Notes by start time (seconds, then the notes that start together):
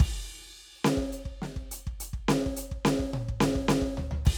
0.00 kick, crash
0.75 hi-hat pedal
0.84 snare
0.97 kick
1.12 closed hi-hat
1.25 kick
1.42 snare
1.56 kick
1.71 closed hi-hat
1.87 kick
2.00 closed hi-hat
2.13 kick
2.28 snare
2.46 kick
2.57 closed hi-hat
2.71 kick
2.85 snare
2.99 kick
3.13 high tom
3.28 kick
3.40 snare
3.55 kick
3.68 snare
3.81 kick
3.97 floor tom
4.11 floor tom
4.25 kick, crash